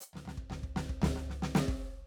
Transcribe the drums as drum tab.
HH |p---------------|
SD |-gg-o-o-oggoo---|
FT |-gg-o-o-o-------|
BD |---g-g-o-----o--|